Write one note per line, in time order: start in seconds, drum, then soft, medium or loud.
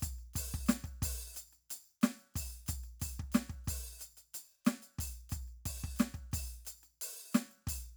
0.01 kick medium
0.01 percussion medium
0.03 percussion loud
0.19 percussion soft
0.34 kick medium
0.34 percussion soft
0.37 percussion loud
0.55 kick medium
0.67 snare loud
0.67 percussion medium
0.70 percussion loud
0.85 kick soft
0.85 percussion soft
1.03 kick medium
1.03 percussion loud
1.36 percussion soft
1.37 percussion medium
1.54 percussion soft
1.71 percussion soft
1.71 percussion loud
2.02 snare loud
2.02 percussion soft
2.04 percussion medium
2.20 percussion soft
2.35 kick medium
2.35 percussion soft
2.38 percussion loud
2.67 percussion medium
2.69 kick medium
2.69 percussion loud
2.85 percussion soft
3.01 kick medium
3.01 percussion soft
3.03 percussion loud
3.20 kick medium
3.33 percussion medium
3.35 snare loud
3.35 percussion medium
3.50 kick soft
3.50 percussion soft
3.65 kick medium
3.65 percussion soft
3.69 percussion loud
4.01 percussion soft
4.01 percussion medium
4.18 percussion soft
4.35 percussion soft
4.35 percussion medium
4.66 snare loud
4.66 percussion soft
4.66 percussion medium
4.83 percussion soft
4.99 kick medium
4.99 percussion soft
5.01 percussion loud
5.30 percussion medium
5.33 kick medium
5.33 percussion medium
5.49 percussion soft
5.67 kick medium
5.67 percussion loud
5.85 kick medium
5.97 percussion medium
6.00 snare loud
6.00 percussion medium
6.15 kick soft
6.15 percussion soft
6.33 kick medium
6.33 percussion soft
6.35 percussion loud
6.66 percussion soft
6.68 percussion medium
6.84 percussion soft
7.02 percussion loud
7.34 percussion soft
7.35 snare loud
7.35 percussion medium
7.52 percussion soft
7.68 kick medium
7.68 percussion soft
7.70 percussion loud